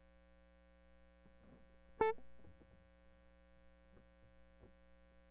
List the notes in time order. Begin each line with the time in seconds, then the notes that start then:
2.01 A4